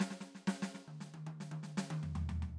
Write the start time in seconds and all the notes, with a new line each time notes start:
0.00 snare
0.10 snare
0.21 snare
0.35 snare
0.47 snare
0.62 snare
0.74 snare
0.88 high tom
1.01 snare
1.14 high tom
1.27 high tom
1.40 snare
1.51 high tom
1.63 snare
1.77 snare
1.90 high tom
2.03 floor tom
2.15 floor tom
2.29 floor tom
2.42 floor tom